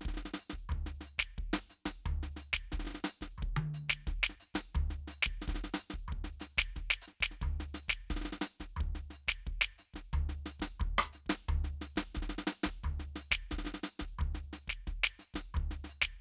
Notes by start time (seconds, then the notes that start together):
0.01 snare
0.05 kick, snare
0.14 snare
0.17 snare
0.25 snare
0.34 snare
0.39 hi-hat pedal
0.50 kick, snare
0.69 kick, floor tom
0.86 snare
1.01 snare, hi-hat pedal
1.19 kick, snare
1.38 kick, snare
1.53 snare
1.70 snare, hi-hat pedal
1.86 kick, snare
2.06 kick, floor tom
2.23 snare
2.37 snare, hi-hat pedal
2.53 kick, snare
2.72 kick, snare
2.79 snare
2.85 snare
2.87 snare
2.90 snare
3.04 snare, hi-hat pedal
3.21 kick, snare
3.38 floor tom
3.42 kick
3.56 high tom
3.74 hi-hat pedal
3.89 kick, snare
4.07 kick, snare
4.23 snare
4.29 snare
4.40 snare, hi-hat pedal
4.54 kick, snare
4.75 kick, floor tom
4.90 snare
5.08 snare, hi-hat pedal
5.23 kick, snare
5.42 snare
5.48 kick, snare
5.54 snare
5.64 snare
5.74 snare, hi-hat pedal
5.90 kick, snare
6.08 floor tom
6.12 kick
6.24 snare
6.40 snare, hi-hat pedal
6.58 kick, snare
6.76 kick, snare
6.90 snare
7.02 hi-hat pedal
7.08 snare
7.21 kick, snare
7.31 snare
7.42 kick, floor tom
7.60 snare
7.74 snare, hi-hat pedal
7.88 kick, snare
8.10 kick, snare
8.16 snare
8.21 snare
8.25 snare
8.32 snare
8.41 snare, hi-hat pedal
8.60 kick, snare
8.77 kick, floor tom
8.95 snare
9.10 snare, hi-hat pedal
9.28 kick, snare
9.46 kick, snare
9.61 snare
9.78 snare, hi-hat pedal
9.94 kick, snare
10.13 kick, floor tom
10.29 snare
10.46 snare, hi-hat pedal
10.60 kick, snare
10.80 kick, floor tom
10.98 cross-stick
11.13 snare, hi-hat pedal
11.26 kick, snare
11.49 kick, floor tom
11.64 snare
11.81 snare, hi-hat pedal
11.96 kick, snare
12.15 kick, snare
12.22 snare
12.29 snare
12.38 snare
12.47 snare
12.51 hi-hat pedal
12.63 kick, snare
12.84 kick, floor tom
13.00 snare
13.16 snare, hi-hat pedal
13.31 kick, snare
13.51 kick, snare
13.58 snare
13.65 snare
13.66 snare
13.74 snare
13.83 snare, hi-hat pedal
13.99 kick, snare
14.19 kick, floor tom
14.35 snare
14.53 snare, hi-hat pedal
14.68 kick, snare
14.87 kick, snare
15.04 snare
15.19 snare, hi-hat pedal
15.34 kick, snare
15.54 kick, floor tom
15.71 snare
15.84 snare
15.89 hi-hat pedal
16.02 kick, snare